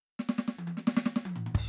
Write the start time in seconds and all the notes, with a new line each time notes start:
0.20 snare
0.29 snare
0.39 snare
0.48 snare
0.57 kick, high tom
0.68 high tom
0.78 snare
0.87 snare
0.97 snare
1.06 snare
1.16 snare
1.26 high tom
1.36 floor tom
1.47 floor tom
1.55 kick, crash